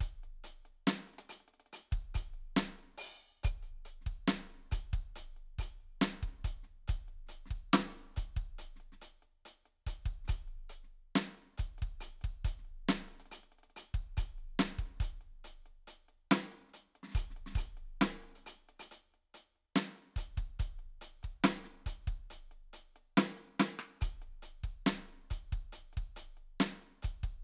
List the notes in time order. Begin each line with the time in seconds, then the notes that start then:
0.01 closed hi-hat, kick
0.24 closed hi-hat
0.44 closed hi-hat
0.65 closed hi-hat
0.87 closed hi-hat, snare
1.08 closed hi-hat
1.14 closed hi-hat
1.19 closed hi-hat
1.30 closed hi-hat
1.41 closed hi-hat
1.48 closed hi-hat
1.54 closed hi-hat
1.60 closed hi-hat
1.66 closed hi-hat
1.73 closed hi-hat
1.92 kick, closed hi-hat
2.15 closed hi-hat, kick
2.34 closed hi-hat
2.57 closed hi-hat, snare
2.78 closed hi-hat
2.98 open hi-hat
3.44 open hi-hat, kick, hi-hat pedal
3.63 closed hi-hat
3.85 closed hi-hat
4.02 snare
4.07 kick, closed hi-hat
4.28 closed hi-hat, snare
4.47 closed hi-hat
4.72 closed hi-hat, kick
4.93 kick, closed hi-hat
5.16 closed hi-hat
5.37 closed hi-hat
5.59 closed hi-hat, kick
5.80 closed hi-hat
6.02 closed hi-hat, snare
6.22 kick, closed hi-hat
6.45 closed hi-hat, kick
6.63 snare, closed hi-hat
6.88 closed hi-hat, kick
7.08 closed hi-hat
7.27 closed hi-hat, snare
7.46 snare
7.50 kick, closed hi-hat
7.73 closed hi-hat, snare
7.79 snare
8.17 closed hi-hat, kick
8.37 kick, closed hi-hat
8.59 closed hi-hat
8.76 snare
8.80 closed hi-hat
8.92 snare
9.02 closed hi-hat
9.23 closed hi-hat
9.46 closed hi-hat
9.66 closed hi-hat
9.87 closed hi-hat, kick
10.06 kick, closed hi-hat
10.25 closed hi-hat, snare
10.29 kick
10.48 closed hi-hat
10.70 closed hi-hat
10.84 snare
10.91 closed hi-hat
11.16 closed hi-hat, snare
11.35 closed hi-hat
11.58 closed hi-hat, kick
11.78 kick, closed hi-hat
12.01 closed hi-hat
12.22 kick, closed hi-hat
12.45 closed hi-hat, kick
12.59 snare
12.65 closed hi-hat
12.89 closed hi-hat, snare
13.09 closed hi-hat
13.14 closed hi-hat
13.20 closed hi-hat
13.26 closed hi-hat
13.32 closed hi-hat
13.44 closed hi-hat
13.52 closed hi-hat
13.59 closed hi-hat
13.64 closed hi-hat
13.70 closed hi-hat
13.77 closed hi-hat
13.94 kick, closed hi-hat
14.17 closed hi-hat, kick
14.38 closed hi-hat
14.59 closed hi-hat, snare
14.79 kick, closed hi-hat
15.00 closed hi-hat, kick
15.21 closed hi-hat
15.45 closed hi-hat
15.66 closed hi-hat
15.88 closed hi-hat
16.09 closed hi-hat
16.32 closed hi-hat, snare
16.52 closed hi-hat
16.69 snare
16.74 closed hi-hat
16.96 closed hi-hat
17.03 snare
17.08 snare
17.11 snare
17.15 closed hi-hat, kick, snare
17.31 snare
17.37 closed hi-hat
17.47 snare
17.50 snare
17.53 snare
17.55 closed hi-hat, kick, snare
17.77 closed hi-hat
18.02 closed hi-hat, snare
18.24 closed hi-hat
18.36 closed hi-hat
18.47 closed hi-hat
18.69 closed hi-hat
18.80 closed hi-hat
18.92 closed hi-hat
19.14 closed hi-hat
19.34 closed hi-hat
19.56 closed hi-hat
19.76 closed hi-hat, snare
19.96 closed hi-hat
20.16 closed hi-hat, kick
20.37 kick, snare, closed hi-hat
20.60 closed hi-hat, kick
20.79 closed hi-hat
21.02 closed hi-hat
21.23 kick, closed hi-hat
21.44 closed hi-hat, snare
21.64 snare, closed hi-hat
21.86 closed hi-hat, kick
22.08 kick, closed hi-hat
22.31 closed hi-hat
22.52 closed hi-hat
22.73 closed hi-hat
22.96 closed hi-hat
23.18 closed hi-hat, snare
23.37 closed hi-hat
23.60 closed hi-hat, snare
23.79 cross-stick, closed hi-hat
24.01 closed hi-hat, kick
24.22 closed hi-hat
24.43 closed hi-hat
24.64 kick, closed hi-hat
24.87 closed hi-hat, snare
25.06 closed hi-hat
25.31 closed hi-hat, kick
25.53 kick, closed hi-hat
25.73 closed hi-hat
25.93 closed hi-hat
25.97 kick
26.17 closed hi-hat
26.37 closed hi-hat
26.60 closed hi-hat, snare
26.82 closed hi-hat
27.03 closed hi-hat, kick
27.24 kick, closed hi-hat